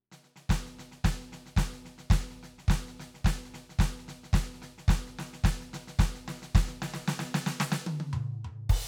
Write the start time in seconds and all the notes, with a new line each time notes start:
0.11 snare
0.23 snare
0.36 snare
0.49 kick, snare
0.66 snare
0.79 snare
0.91 snare
1.04 kick, snare
1.21 snare
1.32 snare
1.46 snare
1.56 kick, snare
1.73 snare
1.85 snare
1.98 snare
2.10 kick, snare
2.30 snare
2.43 snare
2.58 snare
2.68 kick, snare
2.87 snare
3.00 snare
3.14 snare
3.24 kick, snare
3.45 snare
3.54 snare
3.69 snare
3.79 kick, snare
3.98 snare
4.08 snare
4.23 snare
4.33 kick, snare
4.53 snare
4.62 snare
4.78 snare
4.88 kick, snare
5.07 snare
5.19 snare
5.33 snare
5.44 kick, snare
5.60 snare
5.73 snare
5.87 snare
5.99 kick, snare
6.15 snare
6.28 snare
6.42 snare
6.55 kick, snare
6.67 snare
6.82 snare
6.94 snare
7.08 snare
7.19 snare
7.34 snare
7.46 snare
7.60 snare
7.72 snare
7.86 high tom
8.00 high tom
8.13 mid tom
8.45 mid tom
8.69 kick, crash